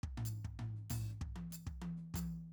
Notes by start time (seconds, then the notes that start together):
0.03 kick
0.17 floor tom
0.25 percussion
0.44 kick
0.59 floor tom
0.76 snare
0.90 kick, floor tom, percussion
1.10 snare
1.21 kick
1.36 high tom
1.50 snare, percussion
1.67 kick
1.82 high tom
1.97 snare
2.14 kick, high tom, percussion